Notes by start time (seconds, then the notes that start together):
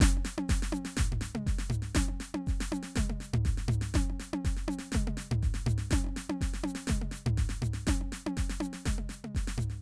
0.01 kick, snare, hi-hat pedal, high tom
0.18 high tom
0.25 snare, hi-hat pedal
0.39 high tom
0.49 kick, snare, hi-hat pedal
0.63 snare
0.73 hi-hat pedal, high tom
0.86 snare
0.97 kick, snare, hi-hat pedal, floor tom
1.13 floor tom
1.22 snare, hi-hat pedal
1.36 mid tom
1.47 kick, snare, hi-hat pedal
1.59 snare
1.70 floor tom, hi-hat pedal
1.83 snare
1.95 kick, snare, hi-hat pedal, high tom
2.09 high tom
2.21 snare, hi-hat pedal
2.35 high tom
2.47 kick, snare, hi-hat pedal
2.61 snare
2.73 hi-hat pedal, high tom
2.83 snare
2.96 kick, snare, hi-hat pedal, mid tom
3.10 mid tom
3.21 snare, hi-hat pedal
3.34 floor tom
3.46 kick, snare, hi-hat pedal
3.58 snare
3.69 floor tom, hi-hat pedal
3.82 snare
3.95 kick, snare, hi-hat pedal, high tom
4.10 high tom
4.20 snare, hi-hat pedal
4.34 high tom
4.45 kick, snare, hi-hat pedal
4.57 snare
4.69 hi-hat pedal, high tom
4.79 snare
4.93 kick, snare, hi-hat pedal, mid tom
5.08 mid tom
5.18 snare, hi-hat pedal
5.32 floor tom
5.43 kick, snare, hi-hat pedal
5.55 snare
5.67 floor tom, hi-hat pedal
5.78 snare
5.91 kick, snare, hi-hat pedal, high tom
6.05 high tom
6.07 high tom
6.09 high tom
6.17 snare, hi-hat pedal
6.30 high tom
6.42 kick, snare, hi-hat pedal
6.54 snare
6.64 hi-hat pedal, high tom
6.76 snare
6.88 kick, snare, hi-hat pedal, mid tom
7.02 mid tom
7.12 snare, hi-hat pedal
7.27 floor tom
7.38 kick, snare, hi-hat pedal
7.50 snare
7.63 floor tom, hi-hat pedal
7.74 snare
7.87 kick, snare, hi-hat pedal, high tom
8.02 high tom
8.13 snare, hi-hat pedal
8.27 high tom
8.37 kick, snare, hi-hat pedal
8.50 snare
8.61 hi-hat pedal, high tom
8.74 snare
8.86 kick, snare, hi-hat pedal, mid tom
8.99 mid tom
9.10 snare, hi-hat pedal
9.25 mid tom
9.36 kick, snare, hi-hat pedal
9.48 snare
9.58 floor tom, hi-hat pedal
9.70 snare